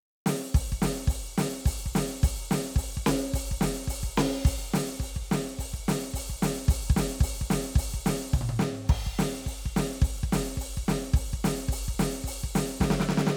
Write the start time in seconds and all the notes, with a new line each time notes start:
0.26 open hi-hat, snare
0.54 open hi-hat, kick
0.72 kick
0.82 open hi-hat, snare
1.07 open hi-hat, kick
1.38 open hi-hat, snare
1.66 open hi-hat, kick
1.86 kick
1.95 open hi-hat, snare
2.23 open hi-hat, kick
2.51 open hi-hat, snare
2.76 open hi-hat, kick
2.97 kick
3.06 open hi-hat, snare
3.33 open hi-hat, kick
3.51 kick
3.61 open hi-hat, snare
3.87 open hi-hat, kick
4.03 kick
4.17 snare, crash
4.45 open hi-hat, kick
4.74 open hi-hat, snare
5.00 open hi-hat, kick
5.16 kick
5.31 open hi-hat, snare
5.59 open hi-hat, kick
5.73 kick
5.88 open hi-hat, snare
6.14 open hi-hat, kick
6.30 kick
6.42 open hi-hat, snare
6.68 open hi-hat, kick
6.90 kick
6.96 open hi-hat, snare
7.20 open hi-hat, kick
7.41 kick
7.50 open hi-hat, snare
7.75 open hi-hat, kick
7.94 kick
8.06 open hi-hat, snare
8.33 kick, high tom
8.41 high tom
8.49 high tom
8.59 snare
8.85 snare
8.89 kick, crash
9.06 kick
9.19 open hi-hat, snare
9.46 open hi-hat, kick
9.66 kick
9.76 open hi-hat, snare
10.02 open hi-hat, kick
10.23 kick
10.32 open hi-hat, snare
10.57 open hi-hat, kick
10.77 kick
10.88 open hi-hat, snare
11.13 open hi-hat, kick
11.33 kick
11.44 open hi-hat, snare
11.68 open hi-hat, kick
11.88 kick
11.99 open hi-hat, snare
12.24 open hi-hat, kick
12.43 kick
12.55 open hi-hat, snare
12.80 kick, snare
12.90 snare
13.00 snare
13.09 snare
13.17 snare
13.27 snare